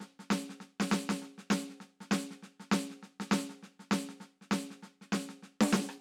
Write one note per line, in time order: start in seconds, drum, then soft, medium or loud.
0.01 snare soft
0.20 snare soft
0.31 snare loud
0.50 snare soft
0.61 snare soft
0.81 snare loud
0.92 snare loud
1.10 snare loud
1.22 snare soft
1.39 snare soft
1.51 snare loud
1.70 snare soft
1.81 snare soft
2.01 snare soft
2.12 snare loud
2.31 snare soft
2.43 snare soft
2.60 snare soft
2.72 snare loud
2.91 snare soft
3.03 snare soft
3.21 snare medium
3.32 snare loud
3.37 snare soft
3.50 snare soft
3.63 snare soft
3.80 snare soft
3.92 snare loud
4.09 snare soft
4.21 snare soft
4.42 snare soft
4.52 snare loud
4.71 snare soft
4.83 snare soft
5.02 snare soft
5.13 snare loud
5.30 snare soft
5.43 snare soft
5.61 snare loud
5.73 snare loud
5.90 cross-stick medium